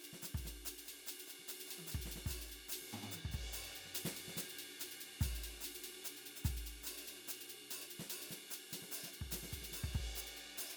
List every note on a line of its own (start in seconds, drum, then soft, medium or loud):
0.01 hi-hat pedal soft
0.01 ride medium
0.13 snare soft
0.23 snare soft
0.23 hi-hat pedal medium
0.23 ride medium
0.35 kick soft
0.35 ride medium
0.42 snare soft
0.42 hi-hat pedal soft
0.47 ride medium
0.66 hi-hat pedal loud
0.66 ride medium
0.79 ride medium
0.86 hi-hat pedal soft
0.86 ride medium
1.07 hi-hat pedal medium
1.07 ride loud
1.20 ride medium
1.27 hi-hat pedal medium
1.27 ride medium
1.40 snare soft
1.48 hi-hat pedal medium
1.48 ride loud
1.61 ride medium
1.67 hi-hat pedal medium
1.67 ride medium
1.78 high tom soft
1.87 hi-hat pedal loud
1.92 kick soft
1.92 ride medium
2.02 hi-hat pedal soft
2.02 ride medium
2.06 snare soft
2.12 ride medium
2.16 snare soft
2.26 kick soft
2.26 hi-hat pedal medium
2.31 ride medium
2.42 ride medium
2.47 hi-hat pedal soft
2.52 ride medium
2.69 hi-hat pedal loud
2.69 ride loud
2.82 snare soft
2.89 floor tom medium
2.89 hi-hat pedal soft
3.03 floor tom medium
3.12 hi-hat pedal loud
3.12 high tom soft
3.25 kick soft
3.32 kick soft
3.32 hi-hat pedal medium
3.32 ride medium
3.53 hi-hat pedal loud
3.53 ride medium
3.65 ride medium
3.73 hi-hat pedal soft
3.73 ride medium
3.86 snare soft
3.95 hi-hat pedal loud
3.95 ride loud
4.04 kick soft
4.04 snare medium
4.04 ride medium
4.15 hi-hat pedal soft
4.15 ride medium
4.28 snare soft
4.37 snare soft
4.37 hi-hat pedal loud
4.37 ride loud
4.50 ride medium
4.57 hi-hat pedal soft
4.57 ride medium
4.80 hi-hat pedal medium
4.80 ride loud
4.92 ride medium
5.01 ride medium
5.21 kick medium
5.21 snare soft
5.21 hi-hat pedal medium
5.21 ride medium
5.36 ride medium
5.44 ride medium
5.61 hi-hat pedal medium
5.61 ride loud
5.75 ride medium
5.84 ride medium
6.05 hi-hat pedal loud
6.05 ride medium
6.17 ride medium
6.26 ride medium
6.36 open hi-hat medium
6.45 kick medium
6.45 hi-hat pedal medium
6.45 ride medium
6.57 ride medium
6.67 ride medium
6.84 hi-hat pedal medium
6.84 ride loud
6.98 ride medium
7.08 ride medium
7.28 hi-hat pedal loud
7.28 ride medium
7.41 ride medium
7.50 ride medium
7.63 snare soft
7.71 hi-hat pedal loud
7.71 ride loud
7.82 ride medium
7.91 ride medium
8.00 snare soft
8.10 hi-hat pedal medium
8.10 ride loud
8.22 ride medium
8.29 snare soft
8.29 hi-hat pedal soft
8.29 ride medium
8.51 hi-hat pedal loud
8.51 ride medium
8.71 snare soft
8.71 hi-hat pedal soft
8.71 ride loud
8.83 snare soft
8.92 hi-hat pedal loud
8.92 ride medium
9.04 snare soft
9.04 ride medium
9.10 hi-hat pedal soft
9.14 ride medium
9.22 kick soft
9.31 snare soft
9.31 hi-hat pedal loud
9.31 ride loud
9.43 snare soft
9.51 kick soft
9.51 hi-hat pedal soft
9.51 ride medium
9.62 snare soft
9.62 ride medium
9.73 snare soft
9.73 hi-hat pedal medium
9.73 ride medium
9.84 kick soft
9.94 kick soft
9.94 hi-hat pedal soft
9.94 ride medium
10.16 hi-hat pedal loud
10.16 ride medium
10.27 ride medium
10.37 hi-hat pedal soft
10.37 ride medium
10.58 hi-hat pedal loud
10.58 ride medium
10.71 ride medium